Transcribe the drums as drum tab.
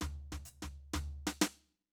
HH |---p--------|
SD |o-g-g-o-oo--|
FT |o-o-o-o-----|